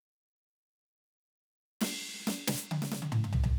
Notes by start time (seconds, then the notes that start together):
1.81 snare, ride
2.01 snare
2.08 snare
2.14 snare
2.20 snare
2.25 snare
2.27 snare
2.38 snare
2.42 snare
2.48 snare
2.57 snare
2.63 snare
2.68 snare, high tom
2.82 snare
2.92 snare
3.02 high tom, percussion
3.12 mid tom
3.24 mid tom
3.33 floor tom
3.44 floor tom